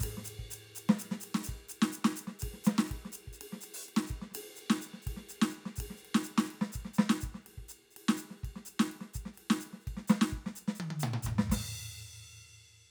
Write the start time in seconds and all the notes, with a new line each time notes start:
0.01 kick, hi-hat pedal, ride
0.09 kick
0.18 snare
0.26 hi-hat pedal, ride
0.40 kick
0.52 hi-hat pedal, ride
0.76 hi-hat pedal, ride
0.90 snare
1.00 hi-hat pedal, ride
1.12 snare
1.22 hi-hat pedal, ride
1.36 snare
1.45 hi-hat pedal
1.49 kick, ride bell
1.56 kick
1.59 kick
1.70 hi-hat pedal, ride
1.83 snare
1.93 hi-hat pedal, ride
2.06 snare
2.17 hi-hat pedal, ride
2.29 snare
2.40 kick, hi-hat pedal, ride
2.50 kick
2.54 kick, snare
2.65 snare, hi-hat pedal
2.79 snare
2.88 hi-hat pedal
2.92 kick, ride
2.98 kick
3.01 kick
3.06 snare
3.13 hi-hat pedal, ride
3.26 kick, snare
3.31 snare
3.34 snare, hi-hat pedal
3.42 ride
3.54 snare
3.62 hi-hat pedal, ride
3.75 open hi-hat
3.84 hi-hat pedal
3.90 ride
3.98 snare
4.08 kick, hi-hat pedal
4.13 ride bell
4.17 kick
4.23 snare
4.33 snare, hi-hat pedal, ride
4.57 hi-hat pedal, ride
4.71 snare
4.83 hi-hat pedal, ride
4.95 snare
5.03 hi-hat pedal
5.08 kick, ride
5.15 kick, snare
5.30 hi-hat pedal, ride
5.43 snare
5.51 hi-hat pedal
5.56 ride bell
5.67 snare
5.77 kick, hi-hat pedal
5.81 ride
5.86 kick
5.89 kick, snare
5.98 hi-hat pedal
6.06 ride
6.16 snare
6.25 hi-hat pedal, ride
6.39 snare
6.46 hi-hat pedal
6.52 ride
6.63 snare
6.74 kick, hi-hat pedal, ride bell
6.82 kick
6.85 kick, snare
6.95 hi-hat pedal
7.00 snare
7.11 snare
7.22 kick, hi-hat pedal, ride bell
7.31 kick
7.34 kick, snare
7.43 hi-hat pedal
7.48 snare, ride
7.55 kick, snare
7.60 snare
7.63 snare
7.67 snare, hi-hat pedal
7.72 ride bell
7.92 hi-hat pedal
7.98 ride
8.10 snare
8.18 hi-hat pedal, ride
8.32 snare
8.39 hi-hat pedal
8.45 kick, ride bell
8.51 kick
8.57 snare
8.67 hi-hat pedal, ride
8.81 snare
8.88 hi-hat pedal
8.93 ride
9.02 snare
9.15 kick, hi-hat pedal, ride bell
9.26 kick, snare
9.35 hi-hat pedal, ride
9.51 snare
9.61 hi-hat pedal, ride
9.74 snare
9.82 hi-hat pedal
9.88 kick, ride bell
9.94 kick
9.98 kick, snare
10.09 snare, hi-hat pedal
10.22 snare
10.30 kick, hi-hat pedal
10.35 ride bell
10.40 kick
10.47 snare
10.57 hi-hat pedal, ride bell
10.69 snare
10.76 hi-hat pedal
10.81 high tom
10.92 high tom
11.01 hi-hat pedal, mid tom
11.24 kick, hi-hat pedal, floor tom
11.32 kick
11.35 kick
11.40 snare
11.51 kick, snare, hi-hat pedal, crash
11.57 kick
11.63 kick